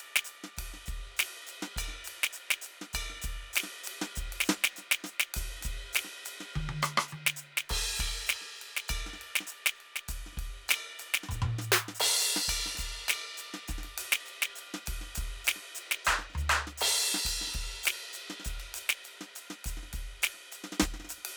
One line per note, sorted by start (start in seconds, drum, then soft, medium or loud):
0.01 ride medium
0.16 snare loud
0.25 hi-hat pedal medium
0.30 ride soft
0.44 snare soft
0.57 kick soft
0.57 hi-hat pedal soft
0.57 ride loud
0.74 snare soft
0.86 kick soft
0.86 hi-hat pedal medium
0.86 ride soft
0.97 kick soft
1.17 snare loud
1.17 hi-hat pedal soft
1.17 ride loud
1.47 hi-hat pedal medium
1.47 ride medium
1.63 snare medium
1.77 kick soft
1.77 hi-hat pedal medium
1.77 ride bell loud
1.82 kick soft
1.89 snare soft
1.94 snare soft
2.05 hi-hat pedal medium
2.05 ride medium
2.24 snare loud
2.33 hi-hat pedal medium
2.38 ride soft
2.51 snare loud
2.62 hi-hat pedal medium
2.67 ride medium
2.82 snare soft
2.94 kick soft
2.94 hi-hat pedal medium
2.94 ride bell loud
3.10 snare soft
3.17 snare soft
3.22 kick soft
3.22 snare soft
3.22 hi-hat pedal medium
3.22 ride medium
3.54 snare loud
3.54 hi-hat pedal medium
3.54 ride loud
3.64 snare soft
3.84 hi-hat pedal medium
3.84 ride loud
4.02 snare medium
4.16 kick soft
4.16 hi-hat pedal medium
4.16 ride soft
4.26 kick soft
4.33 ride medium
4.41 snare medium
4.45 hi-hat pedal medium
4.50 snare loud
4.64 snare loud
4.77 snare soft
4.77 hi-hat pedal medium
4.92 snare loud
5.05 snare medium
5.05 hi-hat pedal medium
5.20 snare loud
5.35 kick soft
5.35 hi-hat pedal medium
5.35 ride loud
5.43 kick soft
5.46 kick soft
5.62 snare soft
5.62 hi-hat pedal medium
5.62 ride medium
5.65 kick soft
5.65 snare soft
5.72 kick soft
5.94 snare loud
5.94 hi-hat pedal medium
5.94 ride loud
6.05 snare soft
6.26 hi-hat pedal medium
6.26 ride medium
6.41 snare soft
6.54 kick soft
6.54 hi-hat pedal soft
6.54 high tom loud
6.65 kick soft
6.70 high tom medium
6.83 cross-stick loud
6.83 hi-hat pedal loud
6.98 cross-stick loud
7.09 hi-hat pedal soft
7.13 high tom medium
7.27 snare loud
7.37 hi-hat pedal medium
7.58 snare medium
7.70 kick soft
7.70 crash medium
7.80 kick soft
7.97 kick soft
7.97 snare soft
7.97 hi-hat pedal medium
8.01 ride bell loud
8.07 kick soft
8.10 kick soft
8.27 percussion soft
8.27 snare loud
8.27 hi-hat pedal medium
8.27 ride soft
8.42 snare soft
8.56 hi-hat pedal soft
8.62 ride medium
8.77 snare medium
8.89 kick soft
8.89 hi-hat pedal medium
8.89 ride bell loud
8.96 kick soft
9.00 kick soft
9.07 snare soft
9.14 snare soft
9.14 hi-hat pedal soft
9.22 ride medium
9.36 snare loud
9.41 snare soft
9.48 hi-hat pedal medium
9.53 ride soft
9.67 snare loud
9.76 hi-hat pedal soft
9.81 ride soft
9.96 snare medium
10.09 kick soft
10.09 hi-hat pedal medium
10.09 ride medium
10.27 snare soft
10.33 snare soft
10.38 kick soft
10.38 ride medium
10.47 kick soft
10.69 snare loud
10.69 hi-hat pedal medium
10.69 ride bell loud
11.00 hi-hat pedal medium
11.00 ride medium
11.14 snare loud
11.24 snare soft
11.29 kick soft
11.29 hi-hat pedal medium
11.29 mid tom medium
11.36 snare soft
11.42 mid tom loud
11.59 snare soft
11.59 hi-hat pedal medium
11.73 snare loud
11.89 snare soft
11.95 hi-hat pedal medium
12.00 crash loud
12.21 hi-hat pedal medium
12.37 snare medium
12.49 kick soft
12.49 hi-hat pedal medium
12.49 ride bell loud
12.66 snare soft
12.75 snare soft
12.75 hi-hat pedal medium
12.75 ride medium
12.79 kick soft
13.09 snare loud
13.09 hi-hat pedal medium
13.09 ride bell loud
13.38 hi-hat pedal medium
13.38 ride medium
13.54 snare soft
13.68 kick soft
13.68 snare soft
13.68 hi-hat pedal medium
13.68 ride medium
13.78 kick soft
13.78 snare soft
13.84 snare soft
13.84 ride medium
13.98 hi-hat pedal medium
13.98 ride loud
14.13 snare loud
14.26 hi-hat pedal soft
14.26 ride soft
14.43 snare medium
14.56 hi-hat pedal medium
14.56 ride medium
14.75 snare medium
14.87 kick soft
14.87 hi-hat pedal medium
14.87 ride loud
14.97 kick soft
15.02 snare soft
15.07 snare soft
15.16 kick soft
15.16 hi-hat pedal medium
15.16 ride medium
15.25 kick soft
15.45 snare loud
15.45 hi-hat pedal medium
15.45 ride loud
15.57 snare soft
15.75 hi-hat pedal loud
15.75 ride soft
15.92 snare medium
16.05 kick soft
16.05 percussion loud
16.05 hi-hat pedal medium
16.19 snare soft
16.30 snare soft
16.34 snare soft
16.34 floor tom loud
16.38 hi-hat pedal soft
16.50 percussion loud
16.68 snare soft
16.78 hi-hat pedal medium
16.78 crash loud
16.82 snare soft
16.85 snare soft
17.15 snare medium
17.26 kick soft
17.26 hi-hat pedal medium
17.26 ride loud
17.42 snare soft
17.48 snare soft
17.53 kick soft
17.53 snare soft
17.53 hi-hat pedal soft
17.53 ride medium
17.64 kick soft
17.84 snare loud
17.84 hi-hat pedal medium
17.84 ride loud
18.14 hi-hat pedal medium
18.14 ride medium
18.30 snare soft
18.40 snare soft
18.45 kick soft
18.45 hi-hat pedal medium
18.45 ride medium
18.50 snare soft
18.60 ride bell medium
18.75 hi-hat pedal medium
18.75 ride medium
18.90 snare loud
19.05 hi-hat pedal soft
19.05 ride medium
19.21 snare soft
19.36 hi-hat pedal medium
19.36 ride medium
19.51 snare soft
19.65 kick soft
19.65 hi-hat pedal medium
19.65 ride medium
19.78 snare soft
19.84 snare soft
19.89 snare soft
19.94 kick soft
19.94 hi-hat pedal soft
19.94 ride medium
20.23 snare loud
20.23 hi-hat pedal medium
20.23 ride loud
20.35 snare soft
20.52 hi-hat pedal medium
20.52 ride medium
20.64 snare soft
20.73 snare soft
20.80 kick soft
20.80 snare loud
20.80 hi-hat pedal medium
20.88 kick soft
20.91 kick soft
20.91 snare soft
21.00 snare soft
21.05 snare soft
21.10 snare soft
21.10 hi-hat pedal medium
21.10 ride medium
21.19 snare soft
21.26 ride loud